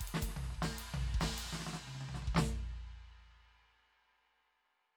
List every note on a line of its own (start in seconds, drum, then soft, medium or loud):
0.01 kick soft
0.01 ride medium
0.07 hi-hat pedal soft
0.07 ride medium
0.14 snare medium
0.22 kick medium
0.22 hi-hat pedal medium
0.22 ride loud
0.29 snare soft
0.37 floor tom medium
0.43 snare soft
0.51 snare soft
0.55 kick soft
0.62 snare medium
0.62 ride medium
0.79 ride medium
0.86 snare soft
0.94 floor tom loud
1.00 snare soft
1.08 snare soft
1.15 kick medium
1.21 snare medium
1.21 ride medium
1.38 ride medium
1.46 snare soft
1.53 snare medium
1.60 snare soft
1.67 snare soft
1.73 snare medium
1.82 high tom soft
1.88 high tom medium
1.95 high tom medium
2.01 high tom medium
2.09 floor tom medium
2.15 snare soft
2.23 floor tom medium
2.28 kick soft
2.35 snare loud
2.35 floor tom medium